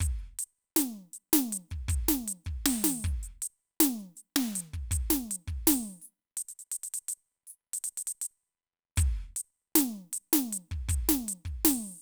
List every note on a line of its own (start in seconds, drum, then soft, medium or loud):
0.01 closed hi-hat loud
0.01 kick medium
0.01 hi-hat pedal medium
0.19 closed hi-hat soft
0.39 closed hi-hat loud
0.77 closed hi-hat loud
0.77 snare loud
1.14 closed hi-hat medium
1.34 snare loud
1.53 closed hi-hat loud
1.71 kick soft
1.71 closed hi-hat soft
1.89 closed hi-hat loud
1.89 kick medium
2.09 snare loud
2.28 closed hi-hat loud
2.45 kick soft
2.45 closed hi-hat soft
2.66 open hi-hat loud
2.66 snare loud
2.85 open hi-hat loud
2.85 snare loud
3.05 kick medium
3.05 hi-hat pedal medium
3.23 closed hi-hat medium
3.43 closed hi-hat loud
3.81 closed hi-hat loud
3.81 snare loud
4.00 closed hi-hat soft
4.16 closed hi-hat medium
4.16 hi-hat pedal soft
4.37 snare loud
4.56 closed hi-hat loud
4.74 kick soft
4.74 closed hi-hat soft
4.92 closed hi-hat loud
4.92 kick medium
5.11 snare loud
5.31 closed hi-hat loud
5.48 kick soft
5.48 closed hi-hat soft
5.68 open hi-hat loud
5.68 snare loud
6.02 hi-hat pedal medium
6.38 closed hi-hat loud
6.49 closed hi-hat medium
6.60 closed hi-hat medium
6.72 closed hi-hat loud
6.84 closed hi-hat loud
6.94 closed hi-hat loud
7.09 closed hi-hat loud
7.48 hi-hat pedal medium
7.74 closed hi-hat loud
7.85 closed hi-hat loud
7.98 closed hi-hat loud
8.08 closed hi-hat loud
8.22 open hi-hat loud
8.97 closed hi-hat loud
8.97 kick medium
8.97 hi-hat pedal medium
9.17 closed hi-hat soft
9.37 closed hi-hat loud
9.76 closed hi-hat loud
9.76 snare loud
9.96 closed hi-hat soft
10.13 closed hi-hat loud
10.33 snare loud
10.53 closed hi-hat loud
10.72 kick soft
10.72 closed hi-hat soft
10.89 closed hi-hat loud
10.89 kick medium
11.09 snare loud
11.29 closed hi-hat loud
11.46 kick soft
11.46 closed hi-hat soft
11.65 open hi-hat loud
11.65 snare loud